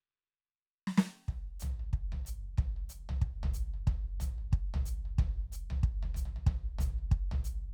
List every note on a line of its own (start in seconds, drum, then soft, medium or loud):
0.87 snare medium
0.98 snare loud
1.28 kick medium
1.28 floor tom medium
1.60 floor tom loud
1.60 hi-hat pedal medium
1.80 floor tom soft
1.93 kick medium
1.93 floor tom soft
2.12 floor tom medium
2.25 floor tom soft
2.25 hi-hat pedal medium
2.58 kick medium
2.58 floor tom medium
2.76 floor tom soft
2.89 floor tom soft
2.89 hi-hat pedal medium
3.09 floor tom loud
3.22 kick medium
3.43 floor tom loud
3.54 hi-hat pedal medium
3.74 floor tom soft
3.87 kick medium
3.87 floor tom medium
4.20 floor tom loud
4.20 hi-hat pedal medium
4.38 floor tom soft
4.52 kick medium
4.52 floor tom soft
4.74 floor tom loud
4.86 floor tom soft
4.86 hi-hat pedal medium
5.05 floor tom soft
5.19 kick medium
5.19 floor tom loud
5.40 floor tom soft
5.52 floor tom soft
5.52 hi-hat pedal medium
5.70 floor tom loud
5.83 kick medium
5.83 floor tom soft
6.03 floor tom medium
6.14 floor tom medium
6.14 hi-hat pedal medium
6.26 floor tom medium
6.36 floor tom medium
6.47 kick medium
6.47 floor tom loud
6.79 floor tom loud
6.79 hi-hat pedal medium
6.99 floor tom soft
7.11 kick medium
7.11 floor tom soft
7.32 floor tom loud
7.44 floor tom soft
7.44 hi-hat pedal medium